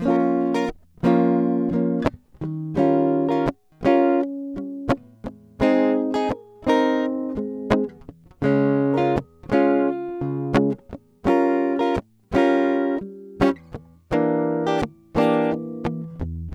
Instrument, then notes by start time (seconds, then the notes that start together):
acoustic guitar
0.01 F3 A#3
0.08 C#4 F4 A#4
0.56 C#4 F4 A#4
1.05 F3 A#3 C#4 F4
1.09 A#4
1.71 F3
1.75 A#3
2.42 D#3 G3
2.77 G3 C#4 F4
2.82 A#4
3.30 C#4 F4 A#4
3.85 G3 C#4 F4
3.89 A#4
4.58 G3
5.25 G#3
5.61 G#3 C4 D#4 G#4
6.15 C4 D#4 G#4
6.69 C4 D#4 A#4
7.37 G#3
7.72 G#3 C4
8.43 C#3 G#3
8.95 C#4 F4 A#4
9.45 C#3
9.51 G#3 C#4
9.55 F4
10.22 C#3
10.56 G#3 C#4 F4
11.26 G3 C#4 F4
11.31 A#4
11.80 C#4 F4 A#4
12.34 G3 C#4 F4
12.39 A#4
12.98 G3
13.42 G3 C#4 F4
14.12 E3 A#3 D4 G4
14.68 A#3 D4 G4
15.16 E3 A#3 D4 G4
15.85 E3 A#3
16.21 E2